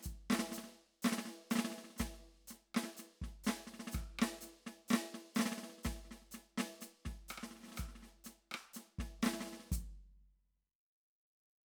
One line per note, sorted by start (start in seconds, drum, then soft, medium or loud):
0.01 snare soft
0.01 hi-hat pedal medium
0.05 kick soft
0.05 snare soft
0.31 snare medium
0.33 cross-stick medium
0.33 snare medium
0.40 snare medium
0.45 snare soft
0.49 snare soft
0.52 snare soft
0.52 hi-hat pedal medium
0.58 snare soft
0.64 snare soft
0.68 snare soft
0.72 snare soft
1.03 snare medium
1.03 hi-hat pedal medium
1.07 cross-stick medium
1.07 snare medium
1.13 snare medium
1.19 snare medium
1.26 snare soft
1.28 snare soft
1.51 snare medium
1.51 hi-hat pedal medium
1.56 snare medium
1.59 snare medium
1.65 snare medium
1.71 snare soft
1.78 snare soft
1.85 snare soft
1.91 snare soft
1.97 snare soft
1.97 hi-hat pedal medium
2.00 kick soft
2.00 snare medium
2.14 snare soft
2.20 snare soft
2.24 snare soft
2.29 snare soft
2.33 snare soft
2.36 snare soft
2.42 snare soft
2.48 snare soft
2.48 hi-hat pedal medium
2.75 cross-stick medium
2.75 snare medium
2.84 snare soft
2.97 snare soft
2.97 hi-hat pedal medium
3.07 snare soft
3.13 snare soft
3.22 kick soft
3.22 snare soft
3.44 snare medium
3.44 hi-hat pedal medium
3.49 snare medium
3.68 snare soft
3.74 snare soft
3.80 snare soft
3.88 snare soft
3.92 kick soft
3.92 cross-stick medium
3.92 snare soft
3.92 hi-hat pedal medium
4.01 kick soft
4.19 cross-stick medium
4.19 snare loud
4.39 snare soft
4.39 hi-hat pedal medium
4.43 snare soft
4.67 snare soft
4.89 snare medium
4.89 hi-hat pedal medium
4.94 snare loud
5.15 snare soft
5.36 snare medium
5.36 hi-hat pedal medium
5.40 snare medium
5.41 snare medium
5.46 snare medium
5.52 snare medium
5.58 snare soft
5.64 snare soft
5.70 snare soft
5.79 snare soft
5.84 kick soft
5.84 snare medium
5.84 hi-hat pedal medium
5.97 snare soft
6.05 snare soft
6.12 snare soft
6.22 snare soft
6.26 snare soft
6.32 snare soft
6.32 hi-hat pedal medium
6.58 snare medium
6.60 snare medium
6.82 snare soft
6.82 hi-hat pedal medium
6.93 snare soft
7.06 kick soft
7.06 snare soft
7.29 cross-stick medium
7.29 hi-hat pedal medium
7.38 cross-stick medium
7.44 snare soft
7.51 snare soft
7.56 snare soft
7.61 snare soft
7.64 snare soft
7.69 snare soft
7.72 snare soft
7.76 cross-stick medium
7.76 snare soft
7.76 hi-hat pedal medium
7.80 kick soft
7.89 snare soft
7.96 snare soft
8.01 snare soft
8.03 snare soft
8.25 snare soft
8.25 hi-hat pedal medium
8.52 cross-stick medium
8.55 cross-stick medium
8.74 snare soft
8.74 hi-hat pedal medium
8.89 snare soft
8.93 snare soft
8.99 kick soft
8.99 snare soft
9.23 snare medium
9.23 hi-hat pedal medium
9.27 snare medium
9.34 snare soft
9.40 snare soft
9.40 snare medium
9.45 snare soft
9.47 snare soft
9.53 snare soft
9.60 snare soft
9.62 snare soft
9.67 snare soft
9.71 kick medium
9.71 snare soft
9.71 hi-hat pedal loud
9.76 kick soft
9.76 snare soft
9.82 kick soft